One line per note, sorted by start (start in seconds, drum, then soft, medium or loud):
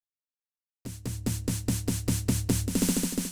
0.85 snare medium
0.85 floor tom medium
1.06 snare medium
1.06 floor tom medium
1.26 snare loud
1.26 floor tom loud
1.48 snare loud
1.48 floor tom loud
1.68 snare loud
1.68 floor tom loud
1.88 snare loud
1.88 floor tom loud
2.08 snare loud
2.08 floor tom loud
2.28 snare loud
2.28 floor tom loud
2.49 snare loud
2.49 floor tom loud
2.68 snare medium
2.75 snare loud
2.82 snare loud
2.89 snare loud
2.96 snare loud
3.03 snare loud
3.12 snare medium
3.18 snare loud
3.25 snare medium